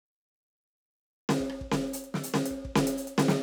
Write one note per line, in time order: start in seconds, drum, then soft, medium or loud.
1.29 snare loud
1.40 kick soft
1.50 cross-stick medium
1.61 kick soft
1.72 snare loud
1.86 closed hi-hat soft
1.93 closed hi-hat loud
2.04 closed hi-hat medium
2.14 snare medium
2.24 closed hi-hat loud
2.34 snare loud
2.46 closed hi-hat loud
2.50 kick soft
2.65 kick soft
2.76 snare loud
2.87 closed hi-hat loud
2.98 closed hi-hat medium
3.07 closed hi-hat medium
3.18 snare loud
3.28 snare loud